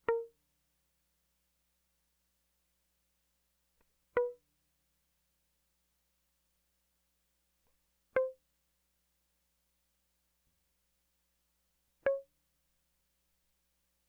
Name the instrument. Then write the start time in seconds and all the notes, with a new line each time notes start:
electric guitar
0.09 A#4
4.17 B4
8.17 C5
12.07 C#5